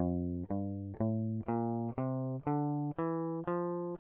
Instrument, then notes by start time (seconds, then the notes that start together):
electric guitar
0.02 F2
0.53 G2
1.02 A2
1.51 A#2
2.00 C3
2.49 D3
3.00 E3
3.49 F3